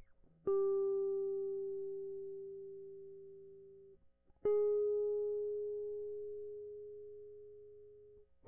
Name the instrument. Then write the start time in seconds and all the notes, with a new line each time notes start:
electric guitar
0.48 G4
4.46 G#4